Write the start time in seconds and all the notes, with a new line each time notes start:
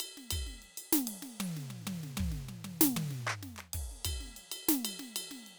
0.00 ride bell
0.17 snare
0.30 kick, ride bell
0.46 snare
0.53 snare
0.62 ride
0.77 ride bell
0.92 snare
1.07 ride
1.22 snare
1.40 hi-hat pedal, high tom
1.56 snare
1.70 high tom
1.81 snare
1.87 high tom
2.03 snare
2.17 kick, high tom
2.30 kick, snare
2.48 high tom
2.64 high tom
2.81 snare
2.96 mid tom
3.08 snare, ride
3.27 percussion
3.43 snare
3.56 percussion
3.73 kick, ride
3.81 kick
3.91 snare
4.04 kick, ride bell
4.12 kick
4.20 snare
4.26 snare
4.36 ride bell
4.51 ride bell
4.68 snare
4.85 ride bell
4.99 snare
5.16 hi-hat pedal, ride bell
5.31 snare
5.42 snare
5.46 ride